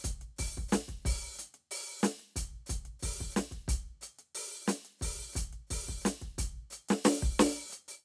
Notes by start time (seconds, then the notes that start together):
0.01 closed hi-hat, kick, hi-hat pedal
0.22 closed hi-hat
0.37 open hi-hat, kick, hi-hat pedal
0.58 kick
0.69 snare, hi-hat pedal
0.73 closed hi-hat
0.89 kick, closed hi-hat
1.02 kick, hi-hat pedal
1.06 open hi-hat
1.36 closed hi-hat, hi-hat pedal
1.54 closed hi-hat
1.71 open hi-hat
2.00 closed hi-hat, snare, hi-hat pedal
2.20 closed hi-hat
2.36 open hi-hat, kick
2.67 closed hi-hat, kick, hi-hat pedal
2.86 closed hi-hat
3.00 open hi-hat, kick, hi-hat pedal
3.21 kick
3.32 hi-hat pedal
3.37 closed hi-hat, snare
3.52 kick, closed hi-hat
3.68 open hi-hat, kick
4.02 closed hi-hat, hi-hat pedal
4.19 closed hi-hat
4.35 open hi-hat
4.66 closed hi-hat, snare, hi-hat pedal
4.85 closed hi-hat
4.99 open hi-hat, kick, hi-hat pedal
5.33 closed hi-hat, kick, hi-hat pedal
5.53 closed hi-hat
5.67 open hi-hat, kick, hi-hat pedal
5.89 kick
6.02 hi-hat pedal
6.06 closed hi-hat, snare
6.22 kick, closed hi-hat
6.39 open hi-hat, kick
6.71 closed hi-hat, hi-hat pedal
6.89 snare, closed hi-hat
7.05 open hi-hat, snare
7.19 kick
7.23 kick
7.40 open hi-hat, snare
7.70 closed hi-hat, hi-hat pedal
7.88 open hi-hat, hi-hat pedal